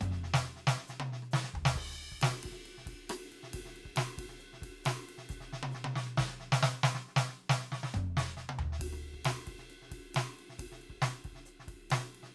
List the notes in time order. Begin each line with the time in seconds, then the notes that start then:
0.01 kick, hi-hat pedal, mid tom
0.10 kick, snare
0.24 snare
0.34 snare
0.45 snare, hi-hat pedal
0.57 snare
0.68 snare
0.78 snare
0.88 snare, hi-hat pedal
1.00 high tom
1.13 snare
1.23 cross-stick
1.32 snare, hi-hat pedal
1.45 snare
1.54 kick, floor tom
1.66 snare
1.75 kick, hi-hat pedal, crash
1.91 snare
2.12 kick
2.18 kick
2.22 snare, hi-hat pedal, ride
2.31 snare
2.44 kick, ride
2.52 kick, snare
2.66 hi-hat pedal, ride
2.78 snare
2.87 kick, ride
2.93 kick
3.10 cross-stick, hi-hat pedal, ride
3.33 ride
3.44 snare
3.54 kick, hi-hat pedal, ride
3.62 kick
3.66 snare
3.77 ride
3.86 kick
3.91 kick
3.97 snare, hi-hat pedal, ride
4.18 kick, ride
4.25 kick, snare
4.40 hi-hat pedal, ride
4.54 snare
4.62 kick, ride
4.69 kick
4.85 snare, hi-hat pedal, ride
5.09 ride
5.19 snare
5.30 kick, hi-hat pedal, ride
5.38 kick, snare
5.53 snare
5.63 high tom
5.72 snare, hi-hat pedal
5.85 high tom
5.96 snare
6.07 cross-stick
6.17 kick, snare, hi-hat pedal
6.27 kick, snare
6.41 snare
6.53 snare
6.61 snare, hi-hat pedal
6.73 snare
6.84 snare
6.95 snare
7.09 snare, hi-hat pedal
7.17 snare
7.29 snare
7.50 snare, hi-hat pedal
7.61 snare
7.73 snare
7.84 snare
7.94 kick, hi-hat pedal, mid tom
8.10 kick
8.18 snare
8.38 snare, hi-hat pedal
8.50 high tom
8.59 floor tom
8.73 snare
8.80 kick, hi-hat pedal, ride
8.87 kick
8.92 kick, cross-stick
9.02 ride
9.14 kick
9.25 snare, hi-hat pedal, ride
9.48 kick, ride
9.54 kick
9.59 snare
9.70 hi-hat pedal, ride
9.83 snare
9.89 kick, snare, ride
10.14 snare, hi-hat pedal, ride
10.39 ride
10.50 snare
10.59 kick, hi-hat pedal, ride
10.66 kick
10.72 snare
10.82 ride
10.90 kick
11.02 snare, hi-hat pedal, ride
11.12 snare
11.25 kick, ride
11.32 kick, snare
11.46 hi-hat pedal, ride
11.60 snare
11.68 kick, ride
11.74 kick
11.91 snare, hi-hat pedal, ride
11.99 snare
12.15 ride
12.24 snare